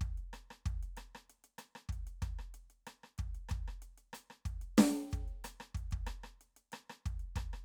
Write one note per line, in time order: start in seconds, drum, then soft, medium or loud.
0.01 kick medium
0.01 closed hi-hat soft
0.18 closed hi-hat soft
0.33 cross-stick medium
0.33 closed hi-hat soft
0.51 cross-stick medium
0.66 kick medium
0.66 closed hi-hat soft
0.83 closed hi-hat soft
0.97 cross-stick medium
0.97 closed hi-hat soft
1.15 cross-stick medium
1.30 closed hi-hat soft
1.44 closed hi-hat soft
1.59 cross-stick medium
1.59 closed hi-hat medium
1.75 cross-stick medium
1.89 kick medium
1.89 closed hi-hat soft
2.07 closed hi-hat soft
2.22 kick medium
2.22 cross-stick soft
2.22 closed hi-hat soft
2.39 cross-stick soft
2.54 closed hi-hat soft
2.70 closed hi-hat soft
2.87 cross-stick medium
2.87 closed hi-hat soft
3.04 cross-stick soft
3.18 kick medium
3.18 closed hi-hat soft
3.35 closed hi-hat soft
3.49 kick medium
3.49 cross-stick medium
3.49 closed hi-hat soft
3.68 cross-stick soft
3.82 closed hi-hat soft
3.98 closed hi-hat soft
4.13 closed hi-hat medium
4.13 cross-stick medium
4.30 cross-stick soft
4.45 kick medium
4.45 closed hi-hat soft
4.62 closed hi-hat soft
4.78 open hi-hat loud
4.78 snare loud
5.11 kick medium
5.11 closed hi-hat soft
5.11 hi-hat pedal soft
5.28 closed hi-hat soft
5.44 closed hi-hat medium
5.44 cross-stick medium
5.60 cross-stick medium
5.75 kick medium
5.75 closed hi-hat soft
5.91 kick medium
5.91 closed hi-hat soft
6.07 cross-stick medium
6.07 closed hi-hat soft
6.24 cross-stick medium
6.41 closed hi-hat soft
6.57 closed hi-hat soft
6.72 cross-stick medium
6.72 closed hi-hat soft
6.90 cross-stick medium
7.06 kick medium
7.06 closed hi-hat soft
7.20 closed hi-hat soft
7.36 kick medium
7.36 cross-stick medium
7.36 closed hi-hat soft
7.53 cross-stick soft